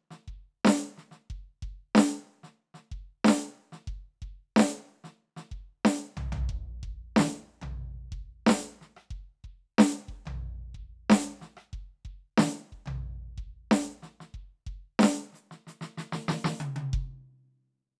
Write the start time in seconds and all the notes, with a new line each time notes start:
0.11 snare
0.28 kick
0.65 snare
0.67 snare
0.98 snare
1.11 snare
1.30 kick
1.62 kick
1.95 snare
1.98 snare
2.43 snare
2.74 snare
2.91 kick
3.24 snare
3.28 snare
3.72 snare
3.87 kick
4.22 kick
4.56 snare
4.59 snare
5.04 snare
5.36 snare
5.51 kick
5.85 snare
6.17 floor tom
6.32 floor tom
6.49 kick
6.83 kick
7.16 snare
7.19 snare
7.61 floor tom, high tom
8.12 kick
8.46 snare
8.49 snare
8.81 snare
8.96 cross-stick
9.10 kick
9.44 kick
9.78 snare
10.08 kick
10.25 floor tom, high tom
10.74 kick
11.10 snare
11.12 snare
11.41 snare
11.57 cross-stick
11.73 kick
12.05 kick
12.38 snare
12.39 snare
12.72 kick
12.86 floor tom, high tom
13.38 kick
13.71 snare
14.02 snare
14.20 snare
14.34 kick
14.66 kick
14.99 snare
15.03 snare
15.33 snare, hi-hat pedal
15.51 snare
15.67 snare, hi-hat pedal
15.81 snare
15.97 snare, hi-hat pedal
16.12 snare
16.28 snare, hi-hat pedal
16.44 snare
16.59 hi-hat pedal, high tom
16.76 high tom
16.93 kick